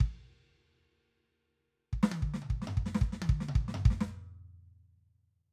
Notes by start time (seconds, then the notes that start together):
0.01 kick
1.93 kick
2.04 snare
2.12 high tom
2.23 kick
2.34 snare
2.42 mid tom
2.51 kick
2.62 snare
2.68 floor tom
2.78 kick
2.86 snare
2.95 snare
3.02 kick
3.13 snare
3.22 high tom
3.30 kick
3.41 snare
3.49 mid tom
3.56 kick
3.69 snare
3.75 floor tom
3.86 kick
3.91 snare
4.01 snare